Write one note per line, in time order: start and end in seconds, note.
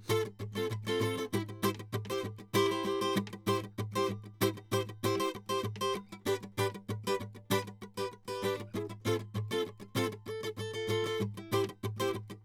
0.10 0.25 F4
0.10 0.25 A4
0.57 0.75 C4
0.57 0.70 F4
0.57 0.71 A4
0.89 1.01 C4
0.89 1.01 F4
0.89 1.01 A4
1.01 1.30 C4
1.01 1.27 F4
1.01 1.20 A4
1.20 1.30 A4
1.34 1.48 E4
1.34 1.43 G4
1.64 1.77 E4
1.64 1.76 C5
2.11 2.33 E4
2.11 2.22 G4
2.11 2.26 C5
2.55 2.85 E4
2.55 2.72 G4
2.55 2.69 C5
2.73 2.86 C5
2.85 3.02 E4
2.85 3.26 G4
2.85 3.01 C5
3.02 3.25 E4
3.02 3.25 C5
3.48 3.64 E4
3.48 3.61 G4
3.48 3.62 C5
3.96 4.19 E4
3.96 4.10 G4
3.96 4.18 C5
4.42 4.55 E4
4.42 4.53 G4
4.42 4.54 C5
4.73 4.87 E4
4.73 4.85 G4
4.73 4.86 C5
5.05 5.39 E4
5.05 5.19 G4
5.05 5.18 C5
5.21 5.32 G4
5.21 5.34 C5
5.50 5.61 G4
5.50 5.65 C5
5.82 6.03 G4
5.82 5.96 C5
6.27 6.40 D4
6.27 6.40 G4
6.27 6.40 B4
6.59 6.72 D4
6.59 6.72 G4
6.59 6.72 B4
7.08 7.18 D4
7.08 7.19 G4
7.08 7.21 B4
7.52 7.65 D4
7.52 7.65 G4
7.52 7.65 B4
7.98 8.11 D4
7.98 8.11 G4
7.98 8.12 B4
8.29 8.43 D4
8.29 8.40 G4
8.29 8.44 B4
8.44 8.67 D4
8.44 8.58 G4
8.44 8.58 B4
8.76 8.90 E4
8.76 8.90 G#4
9.06 9.21 C4
9.06 9.20 F4
9.06 9.20 A4
9.53 9.71 C4
9.53 9.66 F4
9.53 9.67 A4
9.97 10.11 C4
9.97 10.10 F4
9.97 10.11 A4
10.29 10.42 A4
10.45 10.54 A4
10.59 10.73 A4
10.76 10.88 F4
10.76 10.89 A4
10.89 11.08 F4
10.89 11.04 A4
11.05 11.26 F4
11.05 11.27 A4
11.39 11.53 E4
11.53 11.68 E4
11.53 11.67 G4
11.53 11.66 C5
12.01 12.25 E4
12.01 12.13 G4
12.01 12.13 C5